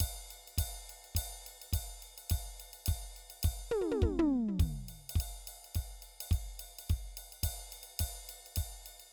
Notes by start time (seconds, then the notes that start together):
0.01 kick, ride
0.31 ride
0.48 ride
0.58 kick, ride
0.90 ride
1.05 ride
1.16 kick, ride
1.47 ride
1.62 ride
1.73 kick, ride
2.03 ride
2.18 ride
2.30 kick, ride
2.60 ride
2.74 ride
2.87 kick, ride
3.17 ride
3.31 ride
3.44 kick, ride
3.72 mid tom
3.92 mid tom
4.03 kick, mid tom
4.19 floor tom
4.48 floor tom
4.60 kick, ride
4.89 ride
5.10 ride
5.16 kick
5.21 ride
5.48 ride
5.65 ride bell
5.75 kick, ride bell
6.03 ride
6.21 ride
6.32 kick, ride
6.60 ride
6.79 ride
6.90 kick, ride
7.18 ride
7.33 ride
7.44 kick, ride
7.73 ride
7.84 ride
8.00 kick, ride
8.30 ride
8.47 ride
8.57 kick, ride
8.87 ride
9.00 ride